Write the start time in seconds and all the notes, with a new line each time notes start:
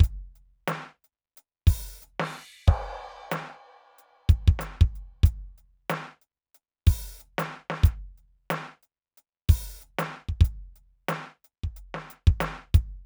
0.01 kick, closed hi-hat
0.36 closed hi-hat
0.68 snare, closed hi-hat
1.05 closed hi-hat
1.38 closed hi-hat
1.68 open hi-hat, kick
2.02 hi-hat pedal
2.20 snare, crash
2.68 kick, crash
3.32 snare, closed hi-hat
3.99 closed hi-hat
4.30 kick, closed hi-hat
4.48 kick
4.60 snare, closed hi-hat
4.82 kick
4.96 closed hi-hat
5.24 kick, closed hi-hat
5.58 closed hi-hat
5.90 snare, closed hi-hat
6.22 closed hi-hat
6.55 closed hi-hat
6.87 kick, open hi-hat
7.20 hi-hat pedal
7.39 snare, closed hi-hat
7.71 snare
7.84 kick, closed hi-hat
8.18 closed hi-hat
8.51 snare, closed hi-hat
8.83 closed hi-hat
9.18 closed hi-hat
9.49 kick, open hi-hat
9.81 hi-hat pedal
9.99 snare, closed hi-hat
10.29 kick
10.41 kick, closed hi-hat
10.76 closed hi-hat
11.09 snare, closed hi-hat
11.45 closed hi-hat
11.64 kick
11.77 closed hi-hat
11.95 snare
12.11 closed hi-hat
12.28 kick
12.41 snare, closed hi-hat
12.75 kick, closed hi-hat